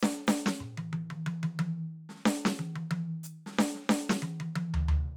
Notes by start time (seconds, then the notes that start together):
0.00 snare, hi-hat pedal
0.12 snare
0.17 snare
0.22 snare
0.25 snare, hi-hat pedal
0.28 snare
0.46 snare
0.60 mid tom
0.77 high tom
0.93 high tom
1.10 high tom
1.26 high tom
1.43 high tom
1.59 high tom
2.09 snare
2.15 snare
2.19 snare
2.23 snare
2.25 snare
2.45 snare
2.59 high tom
2.76 high tom
2.91 high tom
3.23 hi-hat pedal
3.46 snare
3.51 snare
3.55 snare
3.58 snare
3.74 snare
3.78 snare
3.81 snare
3.84 snare
3.89 snare
4.09 snare
4.22 high tom
4.40 high tom
4.56 high tom
4.74 floor tom
4.88 floor tom